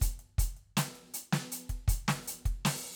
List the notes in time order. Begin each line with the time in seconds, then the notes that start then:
0.01 closed hi-hat, kick, hi-hat pedal
0.20 closed hi-hat
0.39 closed hi-hat, kick
0.57 closed hi-hat
0.77 closed hi-hat, snare
0.96 closed hi-hat
1.14 closed hi-hat
1.33 snare, closed hi-hat
1.52 closed hi-hat
1.70 kick, closed hi-hat
1.88 open hi-hat, kick
2.08 snare
2.23 hi-hat pedal
2.28 closed hi-hat
2.46 kick, closed hi-hat
2.65 open hi-hat, snare